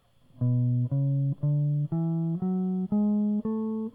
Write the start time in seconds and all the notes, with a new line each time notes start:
0.42 B2
0.92 C#3
1.44 D3
1.93 E3
2.42 F#3
2.92 G#3
3.45 A3